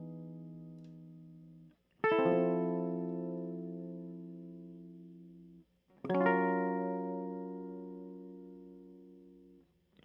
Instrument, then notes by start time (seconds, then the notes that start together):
electric guitar
2.05 A4
2.12 E4
2.19 C4
2.27 F3
6.06 C3
6.10 F#3
6.15 C#4 G#4
6.21 F4
6.26 A#4